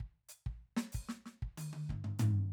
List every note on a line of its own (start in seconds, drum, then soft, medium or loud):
0.00 kick soft
0.29 hi-hat pedal medium
0.46 kick soft
0.77 snare medium
0.92 kick soft
0.92 hi-hat pedal medium
1.09 snare medium
1.26 snare soft
1.42 kick soft
1.58 hi-hat pedal medium
1.58 high tom medium
1.73 high tom medium
1.89 kick soft
1.89 floor tom medium
2.04 floor tom medium
2.19 floor tom loud
2.19 hi-hat pedal medium